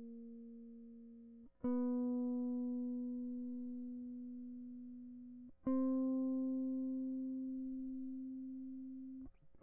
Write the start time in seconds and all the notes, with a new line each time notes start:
1.65 B3
5.68 C4